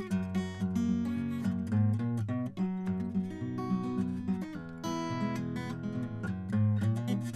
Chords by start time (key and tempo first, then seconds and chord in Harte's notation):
G# minor, 107 BPM
0.06 F#:maj
2.30 B:maj/5
4.54 E:maj
6.79 A#:hdim7